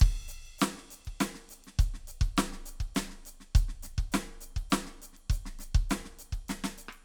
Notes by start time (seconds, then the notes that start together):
0.01 kick, ride
0.16 snare
0.24 snare
0.29 hi-hat pedal, ride
0.46 ride
0.59 snare, hi-hat pedal, ride
0.78 snare
0.91 hi-hat pedal, ride
1.06 kick, ride
1.21 snare, hi-hat pedal, ride
1.35 snare
1.50 hi-hat pedal, ride
1.65 snare, ride
1.80 kick, hi-hat pedal, ride
1.95 snare
2.08 hi-hat pedal, ride
2.22 kick, ride
2.38 snare, hi-hat pedal, ride
2.53 snare
2.66 hi-hat pedal, ride
2.81 kick, ride
2.96 snare, hi-hat pedal, ride
3.11 snare
3.26 hi-hat pedal, ride
3.41 snare, ride
3.56 kick, hi-hat pedal, ride
3.69 snare
3.83 snare, hi-hat pedal, ride
3.99 kick, ride
4.13 snare, hi-hat pedal, ride
4.42 hi-hat pedal, ride
4.57 kick, ride
4.71 snare, hi-hat pedal, ride
4.87 snare
5.03 hi-hat pedal, ride
5.14 snare, ride
5.31 kick, hi-hat pedal, ride
5.46 snare
5.60 snare, hi-hat pedal, ride
5.75 kick, ride
5.90 snare, hi-hat pedal, ride
6.05 snare
6.20 hi-hat pedal, ride
6.33 kick, ride
6.49 snare, hi-hat pedal, ride
6.65 snare
6.79 hi-hat pedal, ride
6.89 cross-stick
6.94 ride